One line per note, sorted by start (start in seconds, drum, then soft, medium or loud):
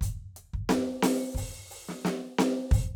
0.01 closed hi-hat loud
0.01 kick medium
0.36 closed hi-hat medium
0.53 kick medium
0.69 snare loud
0.69 closed hi-hat medium
1.02 snare loud
1.02 open hi-hat loud
1.35 open hi-hat loud
1.35 kick medium
1.70 open hi-hat loud
1.88 snare medium
2.05 snare loud
2.38 snare loud
2.71 open hi-hat loud
2.71 kick loud